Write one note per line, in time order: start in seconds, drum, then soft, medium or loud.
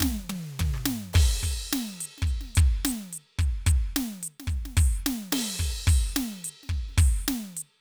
0.01 kick medium
0.01 snare medium
0.03 snare loud
0.30 high tom loud
0.60 kick medium
0.60 mid tom loud
0.74 cross-stick medium
0.74 percussion soft
0.86 snare loud
1.14 kick loud
1.14 crash loud
1.43 open hi-hat medium
1.43 kick medium
1.69 snare loud
1.69 hi-hat pedal medium
2.01 closed hi-hat loud
2.18 snare soft
2.22 kick medium
2.27 closed hi-hat medium
2.41 snare soft
2.55 closed hi-hat loud
2.55 kick loud
2.85 closed hi-hat loud
2.85 snare loud
3.13 closed hi-hat loud
3.39 closed hi-hat medium
3.39 kick medium
3.67 closed hi-hat loud
3.67 kick loud
3.96 snare loud
4.23 closed hi-hat loud
4.40 snare medium
4.48 closed hi-hat medium
4.48 kick medium
4.66 snare soft
4.77 open hi-hat loud
4.77 kick loud
4.96 hi-hat pedal medium
5.06 snare loud
5.32 snare loud
5.32 hi-hat pedal soft
5.32 crash loud
5.60 closed hi-hat medium
5.60 kick medium
5.87 open hi-hat loud
5.87 kick loud
6.12 hi-hat pedal medium
6.16 snare loud
6.45 closed hi-hat loud
6.63 snare soft
6.69 kick medium
6.69 closed hi-hat soft
6.89 snare soft
6.98 open hi-hat loud
6.98 kick loud
7.22 hi-hat pedal soft
7.28 snare loud
7.57 closed hi-hat loud